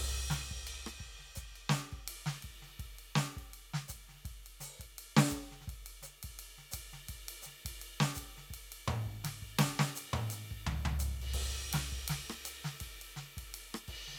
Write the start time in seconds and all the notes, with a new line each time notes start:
0.31 snare, hi-hat pedal
0.51 kick
0.67 ride bell
0.87 cross-stick
1.01 kick
1.20 snare
1.36 kick, hi-hat pedal, ride bell
1.56 ride bell
1.70 snare
1.92 kick, ride bell
2.08 ride
2.26 snare
2.43 kick, ride
2.62 snare
2.69 snare
2.80 kick, ride
2.99 ride
3.16 snare
3.37 kick, ride
3.54 ride
3.74 snare
3.89 kick, hi-hat pedal, ride
4.09 snare
4.13 snare
4.17 snare
4.25 kick, ride
4.47 ride
4.61 snare, hi-hat pedal
4.80 kick, ride
4.99 ride
5.17 snare
5.29 kick, hi-hat pedal, ride
5.52 snare
5.61 snare
5.68 kick, ride
5.87 ride
6.03 snare, hi-hat pedal
6.23 kick, ride
6.39 ride
6.58 snare
6.72 kick, hi-hat pedal, ride
6.93 snare
7.09 kick, ride
7.29 ride
7.43 snare, hi-hat pedal
7.66 kick, ride
7.82 ride
8.01 snare
8.15 kick, hi-hat pedal, ride
8.38 snare
8.51 kick, ride
8.72 ride
8.88 high tom
9.06 kick
9.25 snare, ride
9.43 kick
9.59 snare, ride
9.80 snare
9.96 hi-hat pedal, ride
10.14 high tom
10.31 hi-hat pedal, ride
10.51 kick
10.67 floor tom
10.86 floor tom
11.00 hi-hat pedal, ride
11.17 kick
11.22 ride
11.34 kick, crash
11.42 kick
11.73 snare, ride
11.93 kick
12.08 snare, ride
12.30 cross-stick
12.34 cross-stick
12.45 hi-hat pedal, ride
12.65 snare
12.81 kick, ride
13.02 ride
13.17 snare
13.37 kick, ride
13.55 ride
13.75 cross-stick
13.89 kick, ride
14.08 snare
14.14 snare